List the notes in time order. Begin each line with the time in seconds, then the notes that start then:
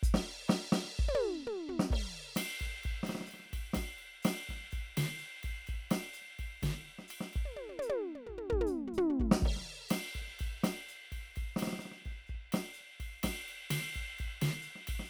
0.02 kick, hi-hat pedal
0.14 snare, crash
0.48 snare, crash
0.72 snare, crash
0.85 snare
0.99 kick
1.05 kick, high tom
1.14 high tom
1.46 mid tom
1.68 kick, floor tom
1.79 snare
1.90 kick, crash
1.96 kick
2.35 snare, hi-hat pedal, ride
2.59 kick, ride
2.66 kick, snare
2.81 kick, hi-hat pedal, ride
2.90 kick
3.03 snare, ride
3.09 snare
3.15 snare
3.21 snare
3.26 snare, hi-hat pedal
3.31 snare, ride
3.39 snare
3.45 snare
3.50 kick, snare, ride
3.58 kick
3.73 kick, snare, hi-hat pedal, ride
3.81 kick
3.98 ride
4.22 snare, hi-hat pedal, ride
4.49 kick, snare, ride
4.56 snare
4.61 snare
4.63 snare
4.70 kick, hi-hat pedal, ride
4.78 kick
4.97 snare, ride
5.18 hi-hat pedal
5.43 kick, ride
5.49 kick
5.66 kick, hi-hat pedal, ride
5.74 kick
5.90 snare, ride
6.13 hi-hat pedal, ride
6.21 snare
6.38 kick, ride
6.44 kick
6.61 kick, snare, hi-hat pedal, ride
6.98 snare
7.08 hi-hat pedal, ride
7.20 snare
7.33 kick, ride
7.45 high tom
7.52 hi-hat pedal
7.56 high tom
7.69 high tom
7.78 hi-hat pedal, high tom
7.89 high tom
8.14 high tom
8.26 kick, mid tom
8.37 mid tom
8.49 kick, mid tom
8.58 kick, mid tom
8.67 hi-hat pedal
8.87 floor tom
8.92 kick, hi-hat pedal
8.97 floor tom
9.09 floor tom
9.19 kick, floor tom
9.25 kick
9.31 snare
9.39 kick, hi-hat pedal
9.44 crash
9.49 kick
9.56 snare
9.88 snare, hi-hat pedal, ride
10.14 kick, ride
10.21 snare
10.27 snare
10.38 kick, hi-hat pedal, ride
10.46 kick
10.63 snare, ride
10.88 hi-hat pedal, ride
11.12 kick, ride
11.17 kick
11.35 kick, hi-hat pedal, ride
11.42 kick
11.56 snare, ride
11.62 snare
11.67 snare
11.73 snare
11.79 snare, hi-hat pedal
11.85 snare
11.91 snare
11.97 snare
12.01 kick, snare, ride
12.06 snare
12.11 snare
12.26 kick, hi-hat pedal, ride
12.34 kick
12.52 snare, ride
12.73 hi-hat pedal
12.80 snare
13.00 kick, ride
13.22 kick, snare, hi-hat pedal, ride
13.28 kick
13.48 ride
13.69 snare, hi-hat pedal, ride
13.94 kick, ride
14.00 kick
14.17 kick, hi-hat pedal, ride
14.25 kick
14.41 snare, ride
14.62 hi-hat pedal
14.75 snare
14.87 kick, ride
14.94 kick
14.99 snare
15.05 hi-hat pedal